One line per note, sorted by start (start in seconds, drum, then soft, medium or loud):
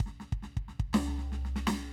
0.00 kick soft
0.00 hi-hat pedal medium
0.06 snare soft
0.06 floor tom medium
0.20 snare soft
0.20 floor tom soft
0.32 kick soft
0.42 snare soft
0.42 floor tom medium
0.57 kick soft
0.68 snare soft
0.68 floor tom medium
0.80 kick medium
0.93 snare loud
0.93 floor tom loud
1.07 snare soft
1.18 snare soft
1.32 snare soft
1.45 snare soft
1.56 snare medium
1.67 snare loud